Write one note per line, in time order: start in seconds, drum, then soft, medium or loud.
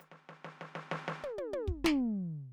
0.00 snare soft
0.00 hi-hat pedal soft
0.11 snare soft
0.29 snare soft
0.44 snare soft
0.61 snare soft
0.75 snare soft
0.91 snare medium
1.08 snare medium
1.23 closed hi-hat soft
1.23 high tom medium
1.38 closed hi-hat soft
1.38 high tom medium
1.53 high tom medium
1.67 kick soft
1.84 snare loud
1.84 floor tom loud